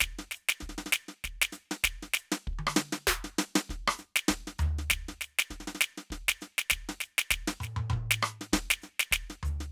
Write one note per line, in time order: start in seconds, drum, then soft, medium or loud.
0.01 kick soft
0.01 snare loud
0.19 snare medium
0.32 snare medium
0.32 hi-hat pedal soft
0.49 snare loud
0.61 kick soft
0.61 snare soft
0.70 snare soft
0.79 snare medium
0.86 snare medium
0.93 snare loud
0.93 hi-hat pedal medium
1.09 snare soft
1.25 kick soft
1.25 snare medium
1.42 snare loud
1.53 snare soft
1.53 hi-hat pedal medium
1.72 snare medium
1.84 kick soft
1.84 snare loud
2.03 snare soft
2.14 snare loud
2.14 hi-hat pedal soft
2.32 snare loud
2.48 kick soft
2.54 kick soft
2.59 kick soft
2.59 high tom medium
2.67 cross-stick loud
2.75 snare loud
2.75 hi-hat pedal soft
2.93 snare medium
3.08 kick soft
3.08 snare loud
3.25 snare medium
3.39 snare loud
3.39 hi-hat pedal soft
3.56 snare loud
3.70 kick soft
3.70 snare soft
3.79 kick soft
3.88 cross-stick loud
3.98 snare soft
3.98 hi-hat pedal soft
4.16 snare loud
4.29 kick soft
4.29 snare loud
4.48 snare medium
4.59 floor tom loud
4.59 hi-hat pedal soft
4.79 snare soft
4.91 kick soft
4.91 snare loud
5.09 snare soft
5.21 snare medium
5.21 hi-hat pedal soft
5.39 snare loud
5.51 kick soft
5.51 snare soft
5.61 snare soft
5.68 snare medium
5.75 snare soft
5.81 snare loud
5.81 hi-hat pedal soft
5.98 snare soft
6.11 kick soft
6.11 snare medium
6.29 snare loud
6.42 snare soft
6.42 hi-hat pedal soft
6.59 snare medium
6.70 kick soft
6.70 snare loud
6.89 snare medium
7.01 snare medium
7.01 hi-hat pedal soft
7.19 snare loud
7.31 kick soft
7.31 snare loud
7.48 snare medium
7.61 snare soft
7.61 hi-hat pedal soft
7.61 mid tom medium
7.77 mid tom loud
7.90 kick soft
7.90 mid tom loud
8.11 snare loud
8.23 cross-stick loud
8.23 hi-hat pedal soft
8.42 snare medium
8.53 kick soft
8.53 snare loud
8.71 snare loud
8.82 snare soft
8.82 hi-hat pedal soft
9.00 snare loud
9.12 kick soft
9.12 snare loud
9.30 snare soft
9.43 floor tom loud
9.43 hi-hat pedal soft
9.61 snare soft